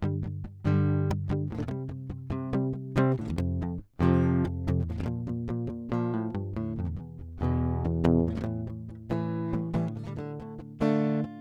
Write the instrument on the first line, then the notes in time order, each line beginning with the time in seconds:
acoustic guitar
0.01 G2 D3 G3
0.25 G2 D3 G3
0.46 G2
0.66 G2 D3 G3
1.12 D3
1.31 G2 D3 G3
1.49 A2 D3
1.61 A#2 E3
1.70 C3 G3
1.90 C3
2.11 C3
2.31 C3
2.55 C3 G3
2.75 C3 G3
2.97 C3 G3 C4
3.15 A2 F3
3.28 A2 D3
3.40 F2 C3
3.63 F2 C3
4.02 F2 C3 F3
4.46 F2 C3
4.69 E2 C3
4.82 A2
4.91 A2
5.08 A#2
5.29 A#2
5.50 A#2
5.69 A#2
5.93 A#2
6.15 A2
6.36 G2
6.58 A2
6.80 F2
6.88 E2
6.98 E2
7.06 E2
7.43 E2 B2
7.87 E2 B2
8.05 E2 B2
8.30 A2
8.38 A#2
8.46 A2
8.69 A2
8.90 A2
9.11 A2 E3
9.55 A2 E3
9.75 A2 E3 G3
9.90 D3
9.98 G3
10.08 D3 G3
10.19 D3
10.82 D3 A3 D4 F4